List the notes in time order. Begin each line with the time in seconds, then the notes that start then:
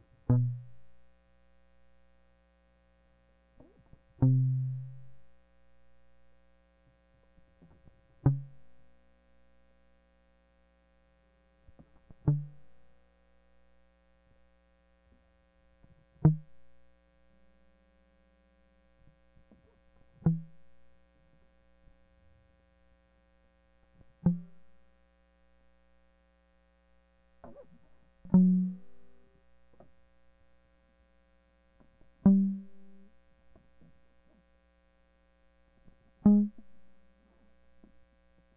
0.32 B2
4.24 C3
8.28 C#3
12.30 D3
16.27 D#3
20.28 E3
24.28 F3
28.36 F#3
32.27 G3
36.27 G#3